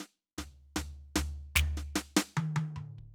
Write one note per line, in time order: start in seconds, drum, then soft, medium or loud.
0.00 snare soft
0.38 snare medium
0.38 floor tom medium
0.76 snare medium
0.76 floor tom medium
1.16 snare loud
1.16 floor tom medium
1.56 snare loud
1.56 floor tom loud
1.77 snare soft
1.96 snare medium
2.17 snare loud
2.37 high tom loud
2.56 high tom loud
2.76 mid tom medium
2.98 kick soft